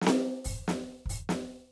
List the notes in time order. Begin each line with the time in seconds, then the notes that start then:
0.02 snare
0.07 snare
0.27 snare
0.44 open hi-hat, kick
0.63 hi-hat pedal
0.68 snare
0.90 snare
1.06 open hi-hat, kick
1.29 snare, hi-hat pedal